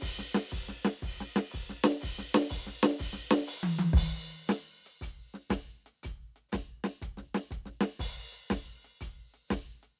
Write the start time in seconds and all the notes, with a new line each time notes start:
0.01 kick, hi-hat pedal, ride
0.19 snare
0.34 snare
0.51 kick, hi-hat pedal, crash
0.68 snare
0.85 snare
1.02 kick, hi-hat pedal, ride
1.20 snare
1.36 snare
1.51 kick, hi-hat pedal, crash
1.69 snare
1.84 snare
2.01 kick, hi-hat pedal, ride
2.18 snare
2.34 snare
2.50 kick, hi-hat pedal, crash
2.67 snare
2.83 snare
2.99 kick, hi-hat pedal, ride
3.13 snare
3.20 kick
3.31 snare
3.47 crash
3.63 high tom
3.79 high tom
3.93 kick, crash
4.47 closed hi-hat, snare, hi-hat pedal
4.86 closed hi-hat
5.01 closed hi-hat, kick
5.34 snare
5.50 closed hi-hat, kick, snare
5.86 closed hi-hat
6.03 closed hi-hat, kick
6.36 closed hi-hat
6.49 closed hi-hat, snare, hi-hat pedal
6.53 kick
6.84 snare
7.02 kick, closed hi-hat
7.17 snare
7.23 kick
7.34 snare
7.51 kick, closed hi-hat
7.66 snare
7.81 snare
7.99 kick, crash
8.32 closed hi-hat
8.50 closed hi-hat, kick, snare
8.84 closed hi-hat
9.01 closed hi-hat, kick
9.34 closed hi-hat
9.48 closed hi-hat, kick, snare, hi-hat pedal
9.83 closed hi-hat